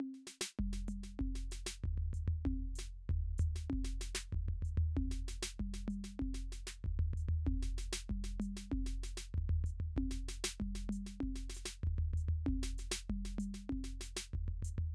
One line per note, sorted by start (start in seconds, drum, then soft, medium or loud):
0.00 high tom medium
0.14 snare soft
0.27 snare soft
0.27 hi-hat pedal medium
0.41 snare medium
0.59 kick soft
0.59 mid tom medium
0.68 kick soft
0.73 snare soft
0.88 hi-hat pedal soft
0.88 mid tom medium
1.03 snare soft
1.19 kick soft
1.19 high tom medium
1.27 kick soft
1.35 snare soft
1.51 snare soft
1.51 hi-hat pedal medium
1.66 snare medium
1.84 kick soft
1.84 floor tom medium
1.93 kick soft
1.98 floor tom medium
2.13 floor tom medium
2.13 hi-hat pedal soft
2.28 floor tom medium
2.45 kick soft
2.45 high tom loud
2.53 kick soft
2.76 snare soft
2.76 hi-hat pedal medium
3.09 kick soft
3.09 floor tom medium
3.38 floor tom medium
3.38 hi-hat pedal medium
3.56 snare soft
3.70 kick soft
3.70 high tom loud
3.79 kick soft
3.85 snare soft
4.01 snare soft
4.01 hi-hat pedal medium
4.15 snare medium
4.33 kick soft
4.33 floor tom medium
4.42 kick soft
4.48 floor tom medium
4.62 floor tom medium
4.62 hi-hat pedal soft
4.77 floor tom medium
4.97 kick soft
4.97 high tom loud
5.05 kick soft
5.11 snare soft
5.28 snare soft
5.28 hi-hat pedal soft
5.43 snare medium
5.60 kick soft
5.60 mid tom medium
5.66 kick soft
5.74 snare soft
5.88 hi-hat pedal soft
5.88 mid tom loud
6.04 snare soft
6.19 kick soft
6.19 high tom medium
6.34 snare soft
6.52 snare soft
6.52 hi-hat pedal soft
6.67 snare soft
6.84 kick soft
6.84 floor tom medium
6.92 kick soft
6.99 floor tom medium
7.13 floor tom medium
7.13 hi-hat pedal soft
7.29 floor tom medium
7.47 kick soft
7.47 high tom medium
7.55 kick soft
7.57 kick soft
7.62 snare soft
7.78 snare soft
7.78 hi-hat pedal soft
7.93 snare medium
8.09 kick soft
8.09 mid tom medium
8.24 snare soft
8.40 hi-hat pedal soft
8.40 mid tom loud
8.57 snare soft
8.72 kick soft
8.72 high tom loud
8.79 kick soft
8.86 snare soft
9.03 snare soft
9.03 hi-hat pedal soft
9.17 snare medium
9.34 kick soft
9.34 floor tom medium
9.49 floor tom medium
9.64 floor tom medium
9.64 hi-hat pedal soft
9.80 floor tom medium
9.97 kick soft
9.97 high tom loud
10.03 kick soft
10.11 snare soft
10.29 snare soft
10.29 hi-hat pedal medium
10.44 snare medium
10.60 kick soft
10.60 mid tom medium
10.68 kick soft
10.75 snare soft
10.89 hi-hat pedal medium
10.89 mid tom medium
11.06 snare soft
11.20 kick soft
11.20 high tom loud
11.36 snare soft
11.50 snare soft
11.55 snare soft
11.55 hi-hat pedal medium
11.65 snare medium
11.83 kick soft
11.83 floor tom medium
11.98 floor tom medium
12.14 floor tom medium
12.14 hi-hat pedal soft
12.29 floor tom medium
12.46 kick soft
12.46 high tom loud
12.55 kick soft
12.63 snare medium
12.78 snare soft
12.78 hi-hat pedal medium
12.92 snare medium
13.10 kick soft
13.10 mid tom medium
13.17 kick soft
13.25 snare soft
13.38 hi-hat pedal medium
13.38 mid tom medium
13.54 snare soft
13.69 kick soft
13.69 high tom loud
13.78 kick soft
13.84 snare soft
14.01 snare soft
14.01 hi-hat pedal medium
14.17 snare medium
14.33 kick soft
14.33 floor tom medium
14.48 floor tom medium
14.62 floor tom medium
14.62 hi-hat pedal medium
14.78 floor tom medium